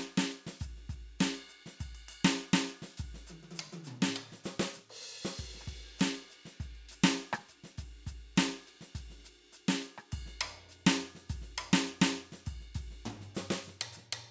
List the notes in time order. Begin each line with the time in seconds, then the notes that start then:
0.00 hi-hat pedal, ride
0.18 snare
0.30 hi-hat pedal, ride
0.47 snare
0.61 kick, hi-hat pedal, ride
0.71 kick
0.77 snare
0.83 snare
0.90 kick, hi-hat pedal, ride
1.20 snare, hi-hat pedal, ride bell
1.49 hi-hat pedal, ride
1.67 snare
1.80 kick, hi-hat pedal, ride bell
1.89 kick
1.95 ride bell
2.09 hi-hat pedal, ride bell
2.25 snare
2.38 hi-hat pedal, ride
2.54 snare
2.68 hi-hat pedal, ride
2.83 snare
2.98 kick, hi-hat pedal, ride
3.09 kick
3.15 snare
3.27 hi-hat pedal, high tom
3.44 high tom
3.51 high tom
3.56 hi-hat pedal
3.60 high tom
3.73 high tom
3.85 hi-hat pedal, mid tom
4.03 snare
4.15 hi-hat pedal, mid tom
4.33 snare
4.45 snare, hi-hat pedal
4.60 snare
4.74 snare, hi-hat pedal
4.90 crash
5.02 hi-hat pedal
5.25 snare
5.36 kick, hi-hat pedal, ride
5.56 snare
5.62 cross-stick
5.68 kick, hi-hat pedal, ride
5.99 snare, hi-hat pedal, ride bell
6.30 hi-hat pedal, ride
6.46 snare
6.61 kick, snare, hi-hat pedal, ride bell
6.66 kick, snare
6.68 snare
6.75 snare, ride bell
6.89 hi-hat pedal, ride
7.04 snare
7.20 hi-hat pedal, ride
7.34 cross-stick
7.39 snare
7.49 kick, hi-hat pedal, ride
7.64 snare
7.78 kick, hi-hat pedal, ride
7.89 snare
8.07 kick, hi-hat pedal, ride
8.37 snare, hi-hat pedal, ride
8.50 snare
8.67 hi-hat pedal, ride
8.82 snare
8.96 kick, hi-hat pedal, ride
9.11 snare
9.19 snare
9.24 snare, hi-hat pedal, ride
9.27 snare
9.53 hi-hat pedal, ride
9.69 snare
9.82 hi-hat pedal, ride
9.99 cross-stick
10.12 kick, hi-hat pedal, ride bell
10.19 kick
10.23 kick, snare
10.40 hi-hat pedal, floor tom
10.69 hi-hat pedal, ride
10.87 snare
10.99 hi-hat pedal, ride
11.16 snare
11.30 kick, hi-hat pedal, ride
11.37 kick
11.40 kick, snare
11.58 hi-hat pedal, floor tom
11.74 snare
11.87 hi-hat pedal, ride
12.02 snare
12.15 hi-hat pedal, ride
12.33 snare
12.46 kick, hi-hat pedal, ride bell
12.54 kick
12.57 kick
12.61 snare
12.75 kick, hi-hat pedal, ride
12.86 kick
12.91 snare
13.06 floor tom, hi-hat pedal
13.21 snare
13.36 snare, hi-hat pedal
13.51 snare
13.65 snare, hi-hat pedal
13.82 mid tom
13.93 hi-hat pedal
13.98 snare
14.13 mid tom